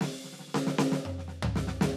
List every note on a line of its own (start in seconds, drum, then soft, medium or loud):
0.02 snare loud
0.02 ride medium
0.24 snare soft
0.32 snare soft
0.39 snare soft
0.47 snare soft
0.54 snare loud
0.67 snare loud
0.78 snare loud
0.92 snare loud
1.05 mid tom loud
1.18 snare soft
1.28 snare soft
1.43 floor tom loud
1.56 snare loud
1.67 snare medium
1.81 snare loud